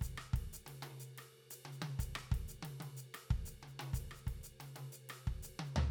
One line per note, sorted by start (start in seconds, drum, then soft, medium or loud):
0.01 kick soft
0.01 hi-hat pedal medium
0.01 ride soft
0.18 cross-stick medium
0.33 kick medium
0.33 ride medium
0.53 hi-hat pedal medium
0.66 high tom medium
0.66 ride medium
0.74 hi-hat pedal soft
0.82 high tom medium
0.82 ride medium
1.00 hi-hat pedal medium
1.18 cross-stick soft
1.18 ride medium
1.50 hi-hat pedal medium
1.50 ride medium
1.65 high tom medium
1.72 hi-hat pedal soft
1.82 high tom loud
1.82 ride soft
1.99 kick soft
1.99 hi-hat pedal medium
1.99 ride medium
2.15 cross-stick medium
2.31 kick medium
2.31 ride medium
2.48 hi-hat pedal medium
2.63 high tom medium
2.63 ride medium
2.80 high tom medium
2.80 ride soft
2.97 hi-hat pedal medium
3.14 cross-stick medium
3.14 ride medium
3.30 kick medium
3.45 hi-hat pedal medium
3.45 ride soft
3.63 high tom medium
3.68 hi-hat pedal soft
3.79 high tom medium
3.79 ride soft
3.93 kick soft
3.93 hi-hat pedal medium
3.93 ride medium
4.11 cross-stick soft
4.16 hi-hat pedal soft
4.27 kick soft
4.27 ride soft
4.43 hi-hat pedal medium
4.60 high tom medium
4.60 ride soft
4.66 hi-hat pedal soft
4.76 high tom medium
4.76 ride medium
4.92 hi-hat pedal medium
5.09 cross-stick medium
5.09 ride medium
5.13 hi-hat pedal soft
5.27 kick medium
5.43 hi-hat pedal medium
5.43 ride medium
5.59 high tom loud
5.65 hi-hat pedal soft
5.76 floor tom loud